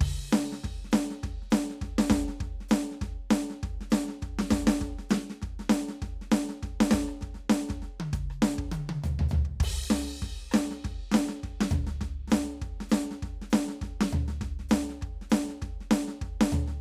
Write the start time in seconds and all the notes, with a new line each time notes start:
0.01 kick, crash
0.31 snare, hi-hat pedal
0.52 snare
0.64 kick, snare
0.85 snare
0.92 snare, hi-hat pedal
1.11 snare
1.23 kick, snare
1.42 snare
1.51 snare, hi-hat pedal
1.70 snare
1.82 kick, snare
1.99 snare
2.08 kick, snare, hi-hat pedal
2.28 snare
2.41 kick, snare
2.61 snare
2.69 snare, hi-hat pedal
2.91 snare
3.02 kick, snare
3.30 snare, hi-hat pedal
3.50 snare
3.63 kick, snare
3.81 snare
3.90 snare, hi-hat pedal
4.08 snare
4.22 kick, snare
4.39 snare
4.50 kick, snare, hi-hat pedal
4.67 snare
4.81 kick, snare
4.99 snare
5.10 snare, hi-hat pedal
5.30 snare
5.42 kick, snare
5.59 snare
5.70 snare, hi-hat pedal
5.89 snare
6.02 kick, snare
6.22 snare
6.31 snare, hi-hat pedal
6.49 snare
6.63 kick, snare
6.81 snare
6.91 kick, snare, hi-hat pedal
7.08 cross-stick
7.21 kick, snare
7.34 snare
7.50 snare, hi-hat pedal
7.69 kick, snare
7.82 snare
8.00 high tom
8.13 kick, snare, hi-hat pedal
8.30 cross-stick
8.42 snare
8.59 kick
8.72 hi-hat pedal, high tom
8.89 high tom
9.04 floor tom, hi-hat pedal
9.19 floor tom
9.29 floor tom, hi-hat pedal
9.45 kick
9.60 kick, crash
9.90 snare, hi-hat pedal
10.08 cross-stick, snare
10.22 kick, snare
10.52 cross-stick, snare, hi-hat pedal
10.71 snare
10.84 kick, snare
11.12 snare, hi-hat pedal
11.14 snare
11.29 snare
11.44 kick, snare
11.61 snare
11.70 kick, floor tom, hi-hat pedal
11.87 snare
12.01 kick, snare
12.28 snare, hi-hat pedal
12.32 snare
12.44 snare
12.47 snare
12.62 kick, snare
12.81 snare
12.89 snare, hi-hat pedal
13.11 snare
13.23 kick, snare
13.42 snare
13.50 snare, hi-hat pedal
13.69 snare
13.82 kick, snare
14.01 snare
14.10 floor tom, hi-hat pedal
14.28 snare
14.41 kick, snare
14.59 snare
14.69 snare, hi-hat pedal
14.89 snare
15.02 kick, cross-stick
15.21 snare
15.30 snare, hi-hat pedal
15.49 snare
15.62 kick, snare
15.81 snare
15.91 snare, hi-hat pedal
16.08 snare
16.22 kick, snare
16.41 snare
16.51 floor tom, hi-hat pedal
16.68 snare